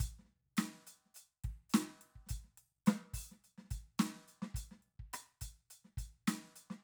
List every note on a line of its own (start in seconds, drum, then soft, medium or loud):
0.00 closed hi-hat medium
0.00 kick medium
0.05 kick soft
0.09 kick soft
0.19 snare soft
0.24 snare soft
0.57 closed hi-hat medium
0.57 snare medium
0.87 closed hi-hat soft
1.06 snare soft
1.15 closed hi-hat soft
1.15 hi-hat pedal soft
1.44 kick soft
1.44 closed hi-hat soft
1.50 kick soft
1.70 hi-hat pedal soft
1.74 closed hi-hat medium
1.74 snare loud
2.02 closed hi-hat soft
2.16 kick soft
2.27 closed hi-hat medium
2.27 snare soft
2.31 kick soft
2.44 snare soft
2.58 closed hi-hat soft
2.87 closed hi-hat medium
2.87 snare loud
3.14 open hi-hat medium
3.14 kick soft
3.32 snare soft
3.44 closed hi-hat soft
3.58 snare soft
3.65 snare soft
3.71 closed hi-hat medium
3.71 kick soft
3.98 closed hi-hat medium
3.98 snare loud
3.98 hi-hat pedal soft
4.16 snare soft
4.28 closed hi-hat soft
4.43 snare soft
4.55 closed hi-hat medium
4.55 kick soft
4.72 snare soft
4.79 snare soft
4.79 closed hi-hat soft
5.00 kick soft
5.14 closed hi-hat medium
5.14 cross-stick medium
5.42 closed hi-hat medium
5.42 kick soft
5.71 closed hi-hat soft
5.85 snare soft
5.98 closed hi-hat medium
5.98 kick soft
6.28 closed hi-hat medium
6.28 snare medium
6.56 closed hi-hat soft
6.71 snare soft